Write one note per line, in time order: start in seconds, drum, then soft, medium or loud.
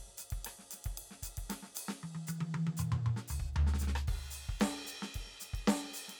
0.07 snare soft
0.17 snare soft
0.17 hi-hat pedal medium
0.17 ride medium
0.30 kick soft
0.30 ride medium
0.45 cross-stick medium
0.45 ride loud
0.59 snare soft
0.71 snare soft
0.71 hi-hat pedal medium
0.71 ride medium
0.84 kick soft
0.84 ride medium
0.97 ride medium
1.11 snare soft
1.23 kick soft
1.23 hi-hat pedal loud
1.23 ride medium
1.37 kick soft
1.37 ride medium
1.50 snare medium
1.50 ride medium
1.63 snare soft
1.75 hi-hat pedal loud
1.75 ride loud
1.88 snare medium
2.03 high tom medium
2.15 high tom medium
2.27 hi-hat pedal loud
2.27 high tom medium
2.41 high tom loud
2.54 high tom loud
2.67 high tom loud
2.77 hi-hat pedal loud
2.77 mid tom medium
2.92 mid tom loud
3.06 mid tom medium
3.16 snare soft
3.28 floor tom medium
3.28 hi-hat pedal medium
3.40 kick soft
3.53 floor tom loud
3.53 hi-hat pedal soft
3.67 snare soft
3.74 snare soft
3.79 snare soft
3.79 hi-hat pedal medium
3.87 snare medium
3.95 cross-stick medium
4.08 kick medium
4.08 crash medium
4.30 hi-hat pedal medium
4.49 kick soft
4.60 snare medium
4.60 ride loud
4.77 snare soft
4.87 hi-hat pedal medium
5.02 snare medium
5.14 kick soft
5.14 ride medium
5.27 snare soft
5.40 snare soft
5.40 hi-hat pedal medium
5.40 ride medium
5.53 kick soft
5.53 ride soft
5.67 snare loud
5.67 ride medium
5.84 snare soft
5.94 hi-hat pedal medium
5.94 ride medium
6.08 snare soft
6.08 ride medium